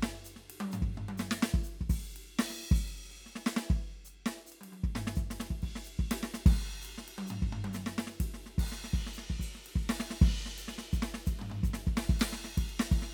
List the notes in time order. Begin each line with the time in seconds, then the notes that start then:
0.01 snare, hi-hat pedal, ride
0.25 hi-hat pedal, ride
0.36 snare
0.50 ride
0.61 high tom
0.72 floor tom, hi-hat pedal
0.83 kick
0.93 hi-hat pedal
0.98 floor tom
1.09 high tom
1.18 snare, hi-hat pedal
1.31 snare
1.43 snare
1.54 kick
1.64 hi-hat pedal, ride
1.81 kick
1.90 open hi-hat, kick, ride
2.17 ride
2.39 snare, crash
2.50 snare
2.64 ride
2.72 open hi-hat, kick
2.88 ride
3.10 ride
3.26 snare
3.36 snare
3.47 snare
3.52 hi-hat pedal
3.57 snare
3.71 kick
4.05 hi-hat pedal
4.26 snare, ride
4.47 hi-hat pedal
4.52 ride bell
4.61 high tom, ride
4.73 high tom, ride
4.84 kick
4.96 snare, floor tom
5.07 snare
5.16 kick, hi-hat pedal
5.31 snare, ride
5.40 snare
5.51 kick
5.60 kick, hi-hat pedal, ride
5.76 snare
5.85 hi-hat pedal, ride
6.00 kick
6.11 snare, ride
6.23 snare
6.34 snare, hi-hat pedal
6.46 kick, crash
6.82 hi-hat pedal, ride
6.98 snare
7.03 hi-hat pedal
7.08 ride
7.18 high tom
7.28 floor tom, hi-hat pedal
7.43 kick
7.53 floor tom
7.65 high tom
7.74 snare, hi-hat pedal
7.87 snare
7.99 snare
8.07 snare
8.21 kick, hi-hat pedal, ride
8.34 snare
8.43 snare, hi-hat pedal
8.58 kick, crash
8.67 hi-hat pedal
8.72 snare
8.84 snare, hi-hat pedal
8.94 kick, crash
9.07 snare
9.14 hi-hat pedal
9.18 snare
9.30 kick
9.40 open hi-hat, kick
9.55 snare
9.67 ride
9.76 kick
9.90 snare, crash
10.00 snare
10.11 snare
10.22 kick, crash
10.46 snare
10.58 hi-hat pedal, ride
10.68 snare, ride
10.79 snare, ride
10.93 kick, hi-hat pedal
11.03 snare, ride
11.14 snare
11.26 kick, hi-hat pedal, ride
11.39 floor tom, high tom
11.50 floor tom, high tom
11.64 kick, hi-hat pedal
11.74 snare, ride
11.87 kick
11.97 snare, crash
12.10 kick
12.20 snare, crash
12.33 snare
12.45 snare
12.58 kick, ride
12.70 ride
12.80 snare
12.92 kick, crash
13.02 snare